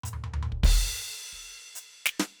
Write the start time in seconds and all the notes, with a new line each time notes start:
0.03 hi-hat pedal, mid tom
0.13 floor tom
0.24 mid tom
0.34 floor tom
0.43 mid tom
0.52 kick
0.63 kick, crash
1.33 kick
1.75 hi-hat pedal
2.06 snare
2.19 snare